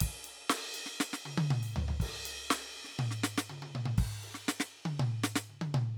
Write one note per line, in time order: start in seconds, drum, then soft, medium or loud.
0.01 kick medium
0.01 ride loud
0.25 ride medium
0.50 snare loud
0.50 ride loud
0.75 ride bell medium
0.86 snare medium
1.01 snare loud
1.14 snare medium
1.26 high tom medium
1.38 high tom loud
1.51 mid tom loud
1.63 closed hi-hat soft
1.76 floor tom loud
1.89 floor tom medium
2.00 kick medium
2.00 ride loud
2.26 ride medium
2.51 snare loud
2.51 ride medium
2.72 ride soft
2.85 snare soft
2.89 snare soft
2.92 snare soft
2.99 mid tom loud
3.11 snare medium
3.24 snare loud
3.38 snare loud
3.50 high tom medium
3.63 high tom medium
3.75 mid tom loud
3.86 mid tom loud
3.98 kick medium
3.98 crash medium
4.23 ride medium
4.35 snare medium
4.49 snare loud
4.60 snare loud
4.86 high tom medium
5.00 mid tom loud
5.24 snare loud
5.36 snare loud
5.50 high tom soft
5.62 high tom medium
5.75 mid tom loud